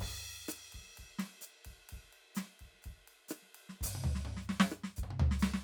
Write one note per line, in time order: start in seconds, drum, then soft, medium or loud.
0.01 kick soft
0.01 crash medium
0.08 kick soft
0.49 cross-stick medium
0.49 hi-hat pedal loud
0.49 ride medium
0.73 kick soft
0.73 ride medium
0.80 kick soft
0.80 snare soft
0.88 snare soft
0.92 snare soft
0.92 hi-hat pedal soft
0.98 kick soft
0.98 ride medium
1.04 kick soft
1.19 snare medium
1.19 ride medium
1.42 hi-hat pedal medium
1.65 kick soft
1.65 ride medium
1.71 kick soft
1.89 kick soft
1.89 snare soft
1.89 hi-hat pedal soft
1.89 ride medium
1.98 kick soft
2.13 ride soft
2.35 snare medium
2.35 hi-hat pedal medium
2.35 ride medium
2.60 kick soft
2.60 ride soft
2.75 snare soft
2.83 kick soft
2.83 hi-hat pedal soft
2.83 ride medium
3.08 ride medium
3.29 cross-stick medium
3.29 hi-hat pedal medium
3.29 ride medium
3.43 snare soft
3.55 ride medium
3.70 snare soft
3.81 kick soft
3.81 hi-hat pedal loud
3.86 kick soft
3.86 mid tom medium
3.96 high tom medium
4.04 floor tom loud
4.16 snare medium
4.25 mid tom medium
4.37 snare medium
4.43 hi-hat pedal soft
4.50 snare medium
4.60 snare loud
4.69 cross-stick medium
4.69 hi-hat pedal soft
4.84 snare medium
4.97 kick medium
4.97 hi-hat pedal medium
5.04 kick soft
5.04 mid tom medium
5.08 kick soft
5.08 high tom medium
5.20 floor tom loud
5.32 snare medium
5.40 snare loud
5.40 hi-hat pedal medium
5.54 snare medium